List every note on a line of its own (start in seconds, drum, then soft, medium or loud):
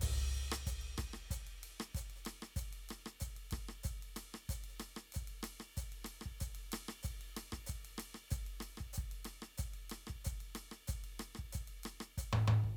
0.01 kick medium
0.01 hi-hat pedal medium
0.01 crash medium
0.01 ride soft
0.34 ride soft
0.52 cross-stick medium
0.67 kick medium
0.67 hi-hat pedal medium
0.67 ride soft
0.81 ride soft
0.98 kick medium
0.98 cross-stick medium
0.98 ride medium
1.13 cross-stick soft
1.30 kick medium
1.30 hi-hat pedal medium
1.30 ride soft
1.47 ride soft
1.63 ride medium
1.80 cross-stick medium
1.95 kick medium
1.95 hi-hat pedal medium
1.95 ride soft
2.10 ride soft
2.16 hi-hat pedal soft
2.25 cross-stick medium
2.25 ride medium
2.42 cross-stick medium
2.56 kick medium
2.56 hi-hat pedal medium
2.56 ride medium
2.73 ride soft
2.89 cross-stick medium
2.89 ride medium
3.06 cross-stick medium
3.20 kick medium
3.20 hi-hat pedal medium
3.20 ride soft
3.37 ride soft
3.51 kick medium
3.51 cross-stick medium
3.51 ride medium
3.68 cross-stick soft
3.83 kick medium
3.83 hi-hat pedal medium
3.83 ride soft
4.02 ride soft
4.16 cross-stick medium
4.16 ride medium
4.34 cross-stick medium
4.49 kick medium
4.49 hi-hat pedal medium
4.49 ride medium
4.64 ride soft
4.70 hi-hat pedal soft
4.80 cross-stick medium
4.80 ride medium
4.96 cross-stick medium
5.12 kick medium
5.12 hi-hat pedal medium
5.12 ride soft
5.27 ride soft
5.43 cross-stick medium
5.43 ride medium
5.60 cross-stick soft
5.77 kick medium
5.77 hi-hat pedal medium
5.77 ride soft
5.92 ride soft
6.04 cross-stick medium
6.04 ride medium
6.21 cross-stick soft
6.26 kick soft
6.40 kick medium
6.40 hi-hat pedal medium
6.40 ride soft
6.55 ride soft
6.72 cross-stick medium
6.72 ride medium
6.88 cross-stick medium
7.03 kick medium
7.03 hi-hat pedal medium
7.03 ride medium
7.21 ride soft
7.37 cross-stick medium
7.37 ride medium
7.52 kick soft
7.52 cross-stick medium
7.66 kick medium
7.66 hi-hat pedal medium
7.66 ride soft
7.85 ride soft
7.98 cross-stick medium
7.98 ride medium
8.14 cross-stick soft
8.30 kick medium
8.30 hi-hat pedal medium
8.30 ride soft
8.47 ride soft
8.60 cross-stick medium
8.60 ride medium
8.77 kick soft
8.77 cross-stick soft
8.93 hi-hat pedal medium
8.93 ride soft
8.98 kick medium
9.11 ride soft
9.25 cross-stick medium
9.25 ride medium
9.42 cross-stick soft
9.58 kick medium
9.58 hi-hat pedal medium
9.58 ride soft
9.74 ride soft
9.90 cross-stick medium
9.90 ride medium
10.07 kick soft
10.07 cross-stick soft
10.24 kick medium
10.24 hi-hat pedal medium
10.24 ride soft
10.40 ride soft
10.55 cross-stick medium
10.55 ride medium
10.71 cross-stick soft
10.87 kick medium
10.87 hi-hat pedal medium
10.87 ride medium
11.04 ride soft
11.19 cross-stick medium
11.19 ride soft
11.35 kick soft
11.35 cross-stick soft
11.52 kick medium
11.52 hi-hat pedal medium
11.52 ride soft
11.68 ride soft
11.83 cross-stick medium
11.83 ride medium
12.00 cross-stick medium
12.18 kick medium
12.18 hi-hat pedal medium
12.18 ride medium
12.33 high tom loud
12.48 high tom loud
12.64 kick soft